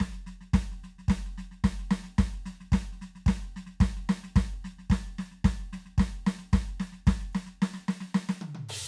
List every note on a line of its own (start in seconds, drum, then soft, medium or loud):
0.00 kick medium
0.00 snare loud
0.12 snare soft
0.26 snare medium
0.41 snare soft
0.53 kick loud
0.53 snare loud
0.71 snare soft
0.84 snare medium
0.98 snare soft
1.08 kick loud
1.08 snare loud
1.26 snare soft
1.38 snare medium
1.51 snare soft
1.64 kick loud
1.64 snare loud
1.79 snare soft
1.91 snare loud
2.04 snare medium
2.18 kick loud
2.18 snare loud
2.32 snare soft
2.46 snare medium
2.60 snare soft
2.72 kick loud
2.72 snare loud
2.92 snare soft
3.01 snare medium
3.15 snare soft
3.26 kick loud
3.26 snare loud
3.42 snare soft
3.56 snare medium
3.66 snare soft
3.80 kick loud
3.80 snare loud
3.96 snare soft
4.09 snare loud
4.23 snare medium
4.36 kick loud
4.36 snare loud
4.53 cross-stick soft
4.64 snare medium
4.79 snare soft
4.90 kick loud
4.90 snare loud
5.06 snare soft
5.18 snare medium
5.31 snare soft
5.44 kick loud
5.44 snare loud
5.60 snare soft
5.73 snare medium
5.86 snare soft
5.98 kick loud
5.98 snare loud
6.13 snare soft
6.27 snare loud
6.38 snare medium
6.53 kick loud
6.53 snare loud
6.67 snare soft
6.80 snare loud
6.92 snare soft
7.06 kick loud
7.06 snare loud
7.06 closed hi-hat soft
7.20 snare soft
7.33 snare loud
7.33 closed hi-hat soft
7.46 snare medium
7.62 snare loud
7.74 snare medium
7.88 snare loud
8.00 snare medium
8.14 snare loud
8.29 snare loud
8.41 high tom loud
8.55 high tom loud
8.69 crash loud